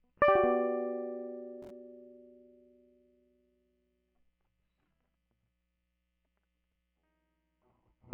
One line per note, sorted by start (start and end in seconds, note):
0.23 3.04 D5
0.29 2.99 G4
0.36 4.12 F#4
0.45 3.78 B3